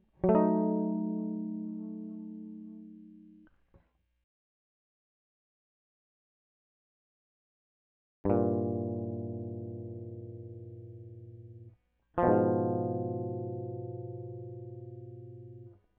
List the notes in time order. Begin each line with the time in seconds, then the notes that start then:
0.24 F#3
0.29 A3
0.34 D#4
8.27 G2 A#2
8.35 E3
12.18 F3
12.24 B2
12.29 G#2